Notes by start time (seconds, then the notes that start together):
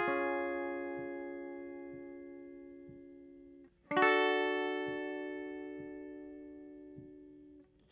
0.00 F4
0.08 C#4
3.92 D4
3.97 F#4
4.03 A4